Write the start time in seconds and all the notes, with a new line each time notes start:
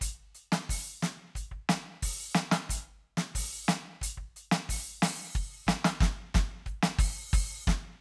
0.01 closed hi-hat, kick
0.35 closed hi-hat
0.52 snare
0.69 open hi-hat, kick
1.00 closed hi-hat, snare, hi-hat pedal
1.35 closed hi-hat, kick
1.51 kick
1.69 closed hi-hat, snare
2.02 open hi-hat, kick
2.32 snare, hi-hat pedal
2.51 snare
2.69 closed hi-hat, kick
3.17 snare
3.35 open hi-hat, kick
3.67 closed hi-hat, snare, hi-hat pedal
4.01 closed hi-hat, kick
4.17 kick
4.36 closed hi-hat
4.51 snare
4.69 open hi-hat, kick
5.02 open hi-hat, snare
5.35 kick
5.67 kick, snare, hi-hat pedal
5.84 snare
6.00 kick, snare
6.34 kick, snare
6.66 kick, hi-hat pedal
6.83 snare
6.99 open hi-hat, kick
7.33 open hi-hat, kick
7.63 hi-hat pedal
7.67 kick, snare